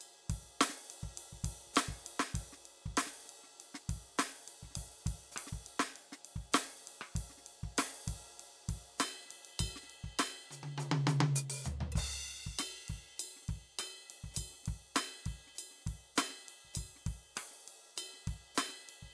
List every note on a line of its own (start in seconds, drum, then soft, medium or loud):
0.01 ride bell soft
0.30 kick medium
0.30 ride medium
0.43 kick soft
0.61 snare loud
0.61 hi-hat pedal medium
0.61 ride loud
0.70 snare soft
0.90 ride medium
1.03 kick soft
1.18 ride medium
1.33 kick soft
1.33 cross-stick soft
1.44 kick soft
1.44 ride medium
1.67 kick soft
1.74 snare loud
1.74 hi-hat pedal medium
1.74 ride loud
1.89 kick soft
2.06 ride medium
2.20 snare loud
2.35 kick soft
2.35 ride medium
2.53 snare soft
2.66 ride soft
2.86 kick soft
2.92 kick soft
2.97 snare loud
2.97 hi-hat pedal loud
2.97 ride loud
3.07 snare soft
3.25 snare soft
3.29 ride soft
3.44 snare soft
3.60 ride medium
3.75 snare medium
3.89 kick soft
3.89 ride medium
3.96 kick soft
4.18 snare loud
4.18 hi-hat pedal loud
4.18 ride loud
4.48 ride medium
4.63 kick soft
4.63 snare soft
4.71 snare soft
4.75 kick soft
4.75 snare soft
4.75 hi-hat pedal soft
4.75 ride medium
4.88 kick soft
4.88 snare soft
4.94 snare soft
5.06 kick medium
5.06 snare soft
5.06 ride medium
5.14 kick soft
5.32 hi-hat pedal medium
5.36 cross-stick medium
5.36 ride medium
5.47 snare soft
5.53 kick soft
5.63 hi-hat pedal soft
5.63 ride medium
5.80 snare loud
5.94 hi-hat pedal soft
5.94 ride soft
6.12 snare soft
6.25 ride medium
6.36 kick soft
6.53 snare loud
6.53 hi-hat pedal medium
6.53 ride loud
6.65 snare soft
6.88 ride medium
7.01 cross-stick medium
7.14 kick soft
7.14 hi-hat pedal soft
7.14 ride medium
7.23 kick soft
7.30 snare soft
7.38 snare soft
7.42 snare soft
7.46 ride medium
7.63 kick soft
7.78 snare loud
7.78 hi-hat pedal loud
7.78 ride loud
8.08 kick soft
8.08 ride medium
8.14 kick soft
8.40 ride medium
8.69 kick soft
8.69 ride medium
8.76 kick soft
8.98 snare medium
8.98 hi-hat pedal medium
8.98 ride bell loud
9.26 snare soft
9.31 snare soft
9.31 ride medium
9.37 snare soft
9.45 ride soft
9.60 kick medium
9.60 ride bell loud
9.66 kick soft
9.72 kick soft
9.72 snare soft
9.83 snare soft
9.90 ride soft
10.04 kick soft
10.19 snare loud
10.19 hi-hat pedal medium
10.19 ride bell loud
10.51 hi-hat pedal medium
10.51 high tom soft
10.63 high tom medium
10.78 hi-hat pedal medium
10.78 high tom medium
10.92 high tom loud
11.07 hi-hat pedal medium
11.07 high tom loud
11.21 high tom loud
11.36 closed hi-hat loud
11.36 hi-hat pedal medium
11.50 closed hi-hat medium
11.64 floor tom medium
11.64 hi-hat pedal medium
11.81 floor tom medium
11.92 kick medium
11.92 percussion medium
11.96 hi-hat pedal loud
11.96 crash loud
12.10 kick soft
12.47 kick soft
12.59 snare medium
12.59 hi-hat pedal medium
12.59 ride bell loud
12.88 kick soft
12.88 ride medium
12.96 kick soft
13.18 hi-hat pedal soft
13.18 ride bell loud
13.36 snare soft
13.40 snare soft
13.42 snare soft
13.47 kick soft
13.47 snare soft
13.47 ride soft
13.56 kick soft
13.79 cross-stick medium
13.79 hi-hat pedal medium
13.79 ride bell loud
14.10 ride medium
14.24 kick soft
14.31 snare soft
14.31 hi-hat pedal medium
14.37 kick soft
14.37 ride bell loud
14.50 snare soft
14.53 snare soft
14.63 snare soft
14.63 ride medium
14.68 kick soft
14.95 snare loud
14.95 hi-hat pedal medium
14.95 ride bell loud
15.26 kick soft
15.26 ride soft
15.32 kick soft
15.47 snare soft
15.55 hi-hat pedal soft
15.55 ride bell medium
15.71 snare soft
15.75 snare soft
15.78 snare soft
15.81 snare soft
15.87 kick soft
15.87 ride medium
15.93 kick soft
16.16 snare loud
16.16 hi-hat pedal medium
16.16 ride bell loud
16.30 snare soft
16.49 ride medium
16.65 kick soft
16.74 kick soft
16.74 hi-hat pedal medium
16.74 ride bell medium
16.85 kick soft
16.96 snare soft
17.01 snare soft
17.07 kick soft
17.07 ride medium
17.14 kick soft
17.36 cross-stick medium
17.36 hi-hat pedal medium
17.36 ride loud
17.51 snare soft
17.68 ride medium
17.97 hi-hat pedal medium
17.97 ride bell loud
18.14 snare soft
18.19 snare soft
18.22 snare soft
18.27 kick soft
18.27 ride soft
18.34 kick soft
18.55 snare medium
18.55 hi-hat pedal medium
18.55 ride bell loud
18.69 snare soft
18.89 ride soft
19.03 kick soft